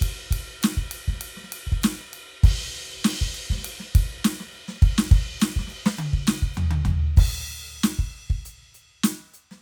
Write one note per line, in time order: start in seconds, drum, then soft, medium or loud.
0.01 kick medium
0.01 hi-hat pedal soft
0.01 ride loud
0.31 kick medium
0.31 ride loud
0.63 snare loud
0.63 hi-hat pedal medium
0.63 ride loud
0.78 kick medium
0.92 hi-hat pedal soft
0.92 ride loud
1.08 kick medium
1.08 snare soft
1.13 snare soft
1.16 snare soft
1.19 snare soft
1.19 hi-hat pedal medium
1.19 ride loud
1.37 snare soft
1.44 snare soft
1.48 snare soft
1.51 snare soft
1.51 hi-hat pedal medium
1.51 ride loud
1.67 kick soft
1.72 kick medium
1.72 ride soft
1.82 snare loud
1.82 hi-hat pedal medium
1.82 ride loud
2.14 ride medium
2.44 kick loud
2.44 ride loud
2.97 kick soft
3.05 snare loud
3.05 hi-hat pedal medium
3.05 ride loud
3.22 kick medium
3.26 snare soft
3.33 snare soft
3.33 ride medium
3.50 kick medium
3.50 snare soft
3.58 snare soft
3.61 snare soft
3.65 snare soft
3.65 hi-hat pedal medium
3.65 ride loud
3.80 snare soft
3.95 kick loud
3.95 ride loud
4.25 snare loud
4.25 hi-hat pedal medium
4.25 ride loud
4.41 snare soft
4.49 snare soft
4.53 snare soft
4.53 ride medium
4.69 snare medium
4.74 snare soft
4.82 kick loud
4.82 hi-hat pedal soft
4.82 ride medium
4.99 snare loud
5.11 kick loud
5.11 hi-hat pedal soft
5.11 ride medium
5.40 snare loud
5.40 hi-hat pedal medium
5.40 ride loud
5.57 kick medium
5.57 snare soft
5.67 snare soft
5.67 ride medium
5.86 snare loud
5.97 hi-hat pedal medium
5.97 mid tom loud
6.14 kick medium
6.27 snare loud
6.27 hi-hat pedal medium
6.27 ride bell loud
6.43 kick medium
6.54 floor tom loud
6.54 hi-hat pedal soft
6.71 mid tom loud
6.86 kick medium
6.86 floor tom loud
6.86 hi-hat pedal soft
7.14 kick soft
7.14 hi-hat pedal medium
7.18 kick loud
7.18 crash loud
7.82 open hi-hat loud
7.82 kick soft
7.82 snare loud
7.87 hi-hat pedal soft
7.99 kick medium
8.16 closed hi-hat soft
8.30 kick medium
8.46 closed hi-hat medium
8.75 closed hi-hat soft
9.04 closed hi-hat loud
9.04 snare loud
9.34 closed hi-hat soft
9.52 snare soft
9.56 snare soft